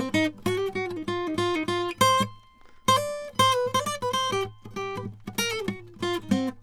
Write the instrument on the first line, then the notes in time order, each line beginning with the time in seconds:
acoustic guitar
0.00 C4
0.14 D#4
0.46 F#4
0.58 G4
0.76 F#4
0.86 F4
0.97 E4
1.08 F4
1.28 D#4
1.39 F4
1.56 D#4
1.69 F4
2.01 C5
2.89 C5
2.98 D5
3.40 C5
3.51 B4
3.75 C5
3.85 D5
4.03 B4
4.14 C5
4.33 G4
4.77 G4
4.96 G4
5.39 A#4
5.51 A4
5.61 F#4
6.03 F4
6.16 D#4
6.32 C4